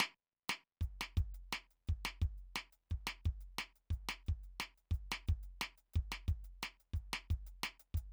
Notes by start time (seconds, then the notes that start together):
0.02 snare
0.49 closed hi-hat, snare
0.81 kick, closed hi-hat
1.01 snare, closed hi-hat
1.17 kick, closed hi-hat
1.34 closed hi-hat
1.52 snare, closed hi-hat
1.71 closed hi-hat
1.87 kick, closed hi-hat
2.05 snare, closed hi-hat
2.22 kick, closed hi-hat
2.38 closed hi-hat
2.55 snare, closed hi-hat
2.72 closed hi-hat
2.90 kick, closed hi-hat
3.07 snare, closed hi-hat
3.25 kick, closed hi-hat
3.41 closed hi-hat
3.58 snare, closed hi-hat
3.76 closed hi-hat
3.90 kick, closed hi-hat
4.09 snare, closed hi-hat
4.26 kick, closed hi-hat
4.43 closed hi-hat
4.60 snare, closed hi-hat
4.77 closed hi-hat
4.91 kick, closed hi-hat
5.11 snare, closed hi-hat
5.28 kick, closed hi-hat
5.43 closed hi-hat
5.61 snare, closed hi-hat
5.78 closed hi-hat
5.93 kick, closed hi-hat
6.11 snare, closed hi-hat
6.28 kick, closed hi-hat
6.44 closed hi-hat
6.63 snare, closed hi-hat
6.80 closed hi-hat
6.93 kick, closed hi-hat
7.13 snare
7.30 kick, closed hi-hat
7.47 closed hi-hat
7.63 snare, closed hi-hat
7.79 closed hi-hat
7.94 kick, closed hi-hat